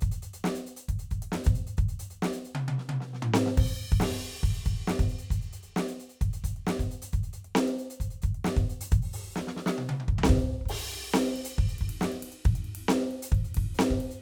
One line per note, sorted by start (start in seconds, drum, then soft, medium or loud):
0.01 closed hi-hat medium
0.01 kick loud
0.12 closed hi-hat medium
0.23 closed hi-hat medium
0.34 closed hi-hat medium
0.44 snare loud
0.55 closed hi-hat medium
0.67 closed hi-hat medium
0.77 closed hi-hat medium
0.89 kick medium
0.89 closed hi-hat medium
0.99 closed hi-hat medium
1.11 closed hi-hat medium
1.11 kick medium
1.22 closed hi-hat medium
1.32 snare loud
1.44 closed hi-hat medium
1.44 kick loud
1.55 closed hi-hat medium
1.67 closed hi-hat medium
1.77 closed hi-hat medium
1.77 kick loud
1.89 closed hi-hat medium
2.00 closed hi-hat loud
2.11 closed hi-hat medium
2.23 snare loud
2.33 closed hi-hat medium
2.45 closed hi-hat medium
2.55 high tom loud
2.68 high tom loud
2.78 snare medium
2.89 high tom loud
3.01 snare medium
3.14 snare soft
3.23 mid tom loud
3.34 snare loud
3.47 snare medium
3.58 kick loud
3.58 crash medium
3.67 closed hi-hat medium
3.92 kick loud
4.00 snare loud
4.00 crash loud
4.24 closed hi-hat medium
4.36 closed hi-hat medium
4.43 closed hi-hat medium
4.43 kick loud
4.54 closed hi-hat medium
4.65 closed hi-hat medium
4.65 kick loud
4.77 closed hi-hat soft
4.88 snare loud
4.99 closed hi-hat medium
4.99 kick loud
5.09 closed hi-hat medium
5.19 closed hi-hat medium
5.31 closed hi-hat medium
5.31 kick loud
5.42 closed hi-hat soft
5.53 closed hi-hat medium
5.77 snare loud
5.88 closed hi-hat medium
6.00 closed hi-hat medium
6.10 closed hi-hat medium
6.21 kick loud
6.21 closed hi-hat medium
6.33 closed hi-hat medium
6.44 closed hi-hat medium
6.44 kick medium
6.57 closed hi-hat soft
6.67 snare loud
6.80 closed hi-hat medium
6.80 kick medium
6.91 closed hi-hat medium
7.02 closed hi-hat loud
7.13 closed hi-hat medium
7.13 kick loud
7.24 closed hi-hat soft
7.33 closed hi-hat medium
7.45 closed hi-hat soft
7.55 snare loud
7.68 closed hi-hat medium
7.79 closed hi-hat medium
7.90 closed hi-hat medium
8.00 closed hi-hat medium
8.00 kick medium
8.11 closed hi-hat soft
8.22 closed hi-hat medium
8.22 kick loud
8.35 closed hi-hat soft
8.45 snare loud
8.57 kick loud
8.57 closed hi-hat soft
8.70 closed hi-hat medium
8.81 closed hi-hat loud
8.92 closed hi-hat medium
8.92 kick loud
9.02 open hi-hat medium
9.13 open hi-hat loud
9.33 snare loud
9.33 hi-hat pedal soft
9.48 snare medium
9.57 snare medium
9.66 snare loud
9.78 high tom loud
9.89 high tom loud
10.00 high tom medium
10.08 kick loud
10.19 floor tom loud
10.24 snare loud
10.30 kick loud
10.38 hi-hat pedal soft
10.61 kick soft
10.66 kick medium
10.66 crash loud
10.92 ride medium
11.11 snare loud
11.11 hi-hat pedal medium
11.34 kick soft
11.34 ride medium
11.45 closed hi-hat loud
11.57 kick loud
11.57 ride soft
11.69 closed hi-hat medium
11.79 kick medium
11.79 ride medium
11.90 ride medium
12.01 snare loud
12.12 ride soft
12.23 ride medium
12.32 closed hi-hat medium
12.45 kick loud
12.45 ride soft
12.56 closed hi-hat medium
12.65 ride soft
12.75 ride medium
12.89 snare loud
13.11 ride soft
13.23 closed hi-hat loud
13.32 kick loud
13.32 ride soft
13.45 closed hi-hat medium
13.55 kick loud
13.55 ride medium
13.75 hi-hat pedal medium
13.79 snare loud
13.79 ride medium
13.91 kick medium
14.01 ride medium
14.11 closed hi-hat medium